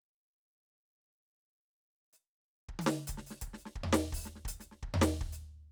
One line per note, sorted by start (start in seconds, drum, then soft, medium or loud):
2.13 hi-hat pedal soft
2.68 kick soft
2.79 hi-hat pedal medium
2.79 high tom loud
2.86 snare loud
3.07 closed hi-hat medium
3.07 kick soft
3.17 snare soft
3.26 hi-hat pedal medium
3.30 snare soft
3.41 kick soft
3.41 closed hi-hat medium
3.53 snare soft
3.58 hi-hat pedal soft
3.65 snare soft
3.75 kick soft
3.83 floor tom loud
3.93 snare loud
4.12 open hi-hat medium
4.12 kick medium
4.24 snare soft
4.24 hi-hat pedal medium
4.35 snare soft
4.45 closed hi-hat medium
4.45 kick soft
4.60 snare soft
4.60 hi-hat pedal medium
4.71 snare soft
4.82 kick soft
4.94 floor tom loud
5.01 snare loud
5.21 kick medium
5.32 hi-hat pedal medium